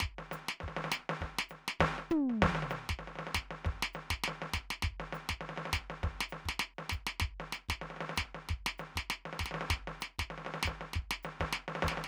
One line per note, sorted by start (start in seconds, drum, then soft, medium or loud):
0.01 kick soft
0.01 snare loud
0.19 snare soft
0.32 kick soft
0.32 snare medium
0.32 hi-hat pedal loud
0.49 snare loud
0.61 kick soft
0.61 snare soft
0.69 snare soft
0.77 snare medium
0.85 snare medium
0.91 kick soft
0.91 snare loud
0.91 hi-hat pedal medium
1.10 snare medium
1.22 kick soft
1.22 snare soft
1.39 snare loud
1.50 snare soft
1.50 hi-hat pedal medium
1.69 snare loud
1.81 kick soft
1.81 snare loud
1.86 kick soft
1.99 snare soft
2.11 floor tom loud
2.11 hi-hat pedal soft
2.30 snare soft
2.43 kick medium
2.43 snare loud
2.50 kick soft
2.55 kick soft
2.55 snare medium
2.63 kick soft
2.63 snare medium
2.71 snare medium
2.71 hi-hat pedal medium
2.90 kick soft
2.90 snare medium
3.00 snare soft
3.08 snare soft
3.16 snare soft
3.20 snare medium
3.28 snare soft
3.35 kick soft
3.35 snare loud
3.35 hi-hat pedal medium
3.52 snare soft
3.66 kick soft
3.66 snare soft
3.73 kick soft
3.76 kick soft
3.83 snare loud
3.94 snare soft
3.94 hi-hat pedal soft
4.11 kick soft
4.11 snare loud
4.24 snare loud
4.29 snare medium
4.43 snare medium
4.54 kick soft
4.54 snare loud
4.54 hi-hat pedal soft
4.71 snare loud
4.83 kick medium
4.83 snare loud
4.91 kick soft
5.01 snare medium
5.13 snare medium
5.13 hi-hat pedal medium
5.30 kick soft
5.30 snare loud
5.42 snare soft
5.50 snare soft
5.57 snare soft
5.57 snare medium
5.66 snare medium
5.74 kick soft
5.74 snare loud
5.74 hi-hat pedal medium
5.91 snare soft
6.04 kick soft
6.04 snare soft
6.10 kick soft
6.13 kick soft
6.21 snare loud
6.30 snare soft
6.30 hi-hat pedal medium
6.46 kick soft
6.46 snare loud
6.60 snare loud
6.79 snare soft
6.90 kick soft
6.90 snare loud
6.90 hi-hat pedal medium
7.07 snare loud
7.21 kick soft
7.21 snare loud
7.28 kick soft
7.41 snare soft
7.53 snare medium
7.53 hi-hat pedal soft
7.70 kick soft
7.70 snare loud
7.82 snare soft
7.91 snare soft
7.97 snare soft
8.01 snare medium
8.10 snare medium
8.17 kick soft
8.17 snare loud
8.17 hi-hat pedal medium
8.35 snare soft
8.50 kick soft
8.50 snare medium
8.59 kick soft
8.67 snare loud
8.79 snare soft
8.79 hi-hat pedal soft
8.96 kick soft
8.96 snare loud
9.11 snare loud
9.26 snare soft
9.34 snare soft
9.40 kick soft
9.40 snare medium
9.40 hi-hat pedal soft
9.47 snare medium
9.52 snare soft
9.55 snare medium
9.62 snare medium
9.71 kick soft
9.71 snare loud
9.77 kick soft
9.88 snare medium
10.01 snare medium
10.01 hi-hat pedal medium
10.19 kick soft
10.19 snare loud
10.31 snare soft
10.39 snare soft
10.46 snare soft
10.47 snare medium
10.55 snare medium
10.64 kick soft
10.64 snare loud
10.64 hi-hat pedal soft
10.68 kick soft
10.68 snare medium
10.82 snare soft
10.94 kick soft
10.94 snare medium
11.03 kick soft
11.12 snare loud
11.23 snare medium
11.23 hi-hat pedal medium
11.41 kick soft
11.41 snare medium
11.54 snare loud
11.69 snare medium
11.76 snare medium
11.83 kick soft
11.83 snare medium
11.87 snare medium
11.87 hi-hat pedal soft
11.92 snare medium
11.98 snare medium
12.05 snare medium